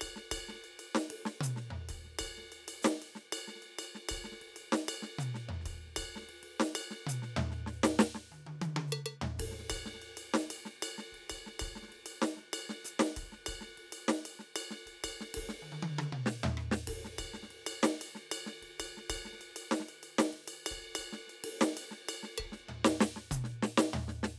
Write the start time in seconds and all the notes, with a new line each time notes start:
0.01 kick, ride bell
0.16 snare
0.31 kick, ride bell
0.48 snare
0.54 snare
0.61 cross-stick, ride bell
0.79 ride bell
0.95 snare
1.10 ride
1.25 snare
1.41 hi-hat pedal, mid tom
1.56 snare
1.70 floor tom
1.89 kick, ride bell
2.05 snare
2.19 kick, ride bell
2.37 snare
2.41 snare
2.52 ride bell
2.68 ride bell
2.82 snare, hi-hat pedal
3.02 ride bell
3.15 snare
3.32 ride bell
3.37 hi-hat pedal
3.47 snare
3.55 snare
3.60 snare, ride bell
3.65 snare
3.68 snare
3.71 snare
3.79 hi-hat pedal, ride bell
3.95 snare
4.09 kick, ride bell
4.17 kick
4.24 snare
4.32 snare
4.41 ride
4.56 ride bell
4.72 snare
4.88 ride bell
5.02 snare
5.18 hi-hat pedal, mid tom
5.34 snare
5.49 floor tom
5.60 snare
5.65 kick, ride bell
5.74 kick
5.86 snare
5.96 kick, ride bell
6.16 snare
6.21 snare
6.29 ride
6.43 ride
6.60 snare
6.75 ride bell
6.91 snare
7.07 hi-hat pedal, mid tom
7.22 snare
7.36 floor tom
7.51 snare
7.66 snare
7.72 hi-hat pedal
7.83 snare
7.99 snare
8.15 snare
8.30 hi-hat pedal, high tom
8.46 high tom
8.62 hi-hat pedal, high tom
8.76 high tom
8.87 hi-hat pedal
8.92 percussion
9.06 percussion
9.21 floor tom
9.37 kick, hi-hat pedal, ride
9.45 kick
9.51 snare
9.59 snare
9.70 kick, ride bell
9.77 kick
9.86 snare
9.94 snare
10.02 ride bell
10.17 ride bell
10.34 snare
10.40 hi-hat pedal
10.50 ride bell
10.65 snare
10.82 hi-hat pedal, ride bell
10.98 snare
11.12 kick, ride
11.30 kick, ride bell
11.46 snare
11.59 kick, ride bell
11.68 kick
11.75 snare
11.83 snare
11.88 snare, ride
11.93 snare
12.06 ride bell
12.22 snare
12.37 snare
12.41 snare
12.53 ride bell
12.69 snare
12.85 hi-hat pedal, ride bell
12.99 snare
13.16 kick, ride bell
13.23 kick
13.32 snare
13.46 kick, ride bell
13.61 snare
13.67 snare
13.77 ride
13.92 ride bell
14.08 snare
14.25 ride bell
14.39 snare
14.56 hi-hat pedal, ride bell
14.71 snare
14.86 kick, ride bell
15.04 kick, ride bell
15.21 snare
15.34 kick, ride
15.49 snare
15.62 high tom
15.83 high tom
15.99 hi-hat pedal, high tom
16.12 mid tom
16.26 snare
16.38 hi-hat pedal
16.43 floor tom
16.57 cross-stick
16.71 snare
16.87 kick, ride
16.96 kick
17.04 snare
17.18 kick, ride bell
17.33 snare
17.43 snare
17.50 ride
17.67 ride bell
17.83 snare
18.01 ride bell
18.15 snare
18.32 hi-hat pedal, ride bell
18.46 snare
18.62 kick, ride
18.79 kick, ride bell
18.97 snare
19.10 kick, ride bell
19.15 kick
19.25 snare
19.33 snare
19.39 snare, ride bell
19.56 ride bell
19.71 snare
19.80 snare
19.88 ride bell
20.03 ride bell
20.18 snare
20.31 hi-hat pedal, ride
20.48 ride bell
20.66 ride bell
20.71 kick
20.95 kick, ride bell
21.12 snare
21.27 snare, ride bell
21.44 ride
21.61 snare
21.77 ride bell
21.91 snare
22.09 hi-hat pedal, ride bell
22.23 snare
22.36 kick, hi-hat pedal, percussion
22.45 kick
22.52 snare
22.69 floor tom
22.84 snare
23.00 snare
23.16 snare
23.31 kick, hi-hat pedal, mid tom
23.44 snare
23.62 snare
23.78 snare
23.93 floor tom
24.08 snare
24.23 snare